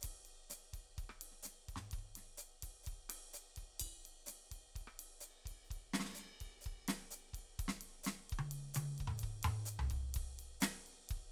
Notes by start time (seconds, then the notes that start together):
0.01 kick, snare, hi-hat pedal, ride
0.25 ride
0.50 snare, hi-hat pedal, ride
0.74 kick, ride
0.78 kick
0.98 kick, ride
1.04 kick
1.09 cross-stick, snare
1.21 ride
1.32 snare
1.43 snare, hi-hat pedal, ride
1.69 kick, ride
1.74 kick, snare, mid tom
1.92 kick, ride
1.99 kick
2.15 snare, ride
2.16 snare
2.38 hi-hat pedal, ride
2.63 kick, ride
2.68 kick
2.84 kick, hi-hat pedal, ride
2.93 kick
3.10 cross-stick, ride
3.34 hi-hat pedal, ride
3.56 kick, ride
3.63 kick
3.79 kick, hi-hat pedal, ride bell
3.86 kick
4.06 ride
4.26 snare, hi-hat pedal, ride
4.51 kick, ride
4.56 kick
4.76 kick, ride
4.81 kick
4.87 cross-stick, snare
5.00 ride
5.21 hi-hat pedal, ride
5.46 kick, ride
5.51 kick
5.65 hi-hat pedal
5.71 kick, ride
5.76 kick
5.94 snare, ride
6.00 snare
6.05 snare
6.09 snare
6.12 snare, hi-hat pedal
6.16 snare, ride
6.19 snare
6.23 snare
6.26 snare
6.41 kick, ride
6.46 kick
6.61 hi-hat pedal, ride
6.66 kick
6.72 kick
6.88 snare, ride
7.11 hi-hat pedal, ride
7.19 snare
7.34 kick, snare, ride
7.39 kick, snare
7.59 kick, ride
7.65 kick, snare
7.81 ride
8.04 snare, hi-hat pedal, ride
8.30 kick, ride
8.38 kick, high tom
8.51 ride
8.74 hi-hat pedal, high tom, ride
8.98 kick, ride
9.06 kick, mid tom
9.18 hi-hat pedal, ride
9.23 kick
9.29 kick
9.43 mid tom, ride
9.66 hi-hat pedal, ride
9.79 floor tom
9.90 kick, ride
9.96 kick
10.14 kick, ride
10.22 kick
10.39 ride
10.61 snare, hi-hat pedal, ride
10.86 ride
10.92 snare
10.96 snare
11.09 kick, ride
11.17 kick